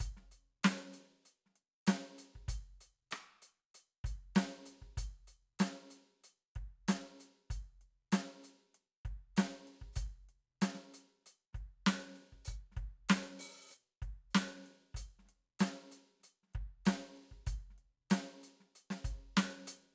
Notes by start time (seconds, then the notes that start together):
0.00 closed hi-hat, kick
0.05 kick
0.17 snare
0.31 closed hi-hat
0.64 closed hi-hat, snare
0.93 closed hi-hat
1.25 closed hi-hat
1.46 snare
1.49 snare
1.56 closed hi-hat
1.87 closed hi-hat, snare
2.18 closed hi-hat
2.35 kick
2.48 closed hi-hat, kick
2.81 closed hi-hat
3.11 closed hi-hat, cross-stick
3.42 closed hi-hat
3.74 closed hi-hat
4.04 closed hi-hat, kick
4.35 closed hi-hat, snare
4.66 closed hi-hat
4.82 kick
4.97 closed hi-hat, kick
5.27 closed hi-hat
5.59 closed hi-hat, snare
5.90 closed hi-hat
6.24 closed hi-hat
6.55 kick, closed hi-hat
6.88 closed hi-hat, snare
7.20 closed hi-hat
7.50 closed hi-hat, kick
7.81 closed hi-hat
8.12 closed hi-hat, snare
8.44 closed hi-hat
8.74 closed hi-hat
9.05 kick, closed hi-hat
9.37 closed hi-hat, snare
9.67 closed hi-hat
9.81 kick
9.93 closed hi-hat, kick, hi-hat pedal
10.02 kick
10.06 kick
10.29 closed hi-hat
10.61 closed hi-hat, snare
10.75 snare
10.94 closed hi-hat
11.26 closed hi-hat
11.53 kick, snare, closed hi-hat
11.86 open hi-hat, snare, hi-hat pedal
12.16 open hi-hat
12.32 kick
12.45 open hi-hat, kick, hi-hat pedal
12.72 snare
12.77 kick, closed hi-hat
13.09 closed hi-hat, snare
13.39 open hi-hat
13.70 hi-hat pedal
14.02 kick, closed hi-hat
14.30 hi-hat pedal
14.35 closed hi-hat, snare
14.66 closed hi-hat
14.94 closed hi-hat, kick
14.99 snare
15.19 snare
15.25 snare, closed hi-hat
15.59 closed hi-hat, snare
15.92 closed hi-hat
16.20 closed hi-hat, snare
16.43 snare
16.47 snare
16.50 snare, closed hi-hat
16.55 kick
16.85 closed hi-hat, snare
17.00 snare
17.16 closed hi-hat
17.31 kick
17.46 closed hi-hat, kick
17.70 snare
17.78 closed hi-hat
18.10 closed hi-hat, snare
18.43 closed hi-hat
18.60 snare
18.75 closed hi-hat
18.90 snare
19.04 closed hi-hat, kick
19.37 closed hi-hat, snare
19.67 open hi-hat